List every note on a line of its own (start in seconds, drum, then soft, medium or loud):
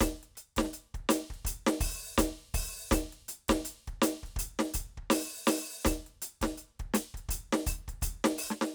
0.01 open hi-hat loud
0.01 kick medium
0.01 snare loud
0.01 hi-hat pedal soft
0.24 closed hi-hat soft
0.36 closed hi-hat medium
0.36 cross-stick soft
0.57 kick medium
0.57 snare loud
0.57 closed hi-hat medium
0.65 snare soft
0.74 closed hi-hat medium
0.95 kick medium
0.95 closed hi-hat soft
1.10 closed hi-hat loud
1.10 snare loud
1.31 kick soft
1.31 closed hi-hat soft
1.46 closed hi-hat loud
1.46 kick medium
1.68 snare loud
1.81 open hi-hat loud
1.81 kick medium
2.14 hi-hat pedal soft
2.19 closed hi-hat loud
2.19 kick medium
2.19 snare loud
2.55 open hi-hat loud
2.55 kick medium
2.92 open hi-hat loud
2.92 kick medium
2.92 snare loud
2.92 hi-hat pedal soft
3.13 closed hi-hat soft
3.29 closed hi-hat loud
3.49 kick medium
3.49 snare loud
3.49 closed hi-hat medium
3.66 closed hi-hat loud
3.88 kick medium
3.88 closed hi-hat soft
4.03 closed hi-hat loud
4.03 snare loud
4.24 kick soft
4.24 closed hi-hat soft
4.37 closed hi-hat loud
4.37 kick medium
4.60 snare loud
4.75 closed hi-hat loud
4.75 kick medium
4.98 kick soft
5.11 open hi-hat loud
5.11 snare loud
5.11 hi-hat pedal soft
5.48 open hi-hat loud
5.48 snare loud
5.86 open hi-hat loud
5.86 kick medium
5.86 snare loud
5.86 hi-hat pedal soft
6.07 closed hi-hat soft
6.23 closed hi-hat loud
6.42 kick medium
6.42 snare loud
6.42 closed hi-hat medium
6.58 closed hi-hat medium
6.80 kick medium
6.80 closed hi-hat soft
6.95 closed hi-hat loud
6.95 snare loud
7.15 kick soft
7.15 closed hi-hat medium
7.30 closed hi-hat loud
7.30 kick medium
7.54 snare loud
7.67 open hi-hat loud
7.67 kick medium
7.67 hi-hat pedal soft
7.89 kick soft
7.89 closed hi-hat medium
8.02 closed hi-hat loud
8.02 kick medium
8.02 hi-hat pedal medium
8.25 snare loud
8.39 open hi-hat loud
8.45 kick soft
8.45 hi-hat pedal soft
8.51 snare medium
8.62 snare loud